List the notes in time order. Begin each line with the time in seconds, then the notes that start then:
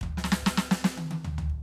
0.04 kick, floor tom
0.17 snare
0.24 snare
0.32 snare
0.42 kick, snare
0.57 snare
0.71 snare
0.84 snare
0.97 high tom
1.11 high tom
1.25 floor tom
1.38 floor tom
1.50 kick